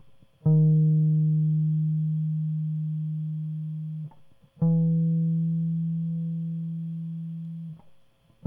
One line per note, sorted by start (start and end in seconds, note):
0.47 4.09 D#3
4.63 7.76 E3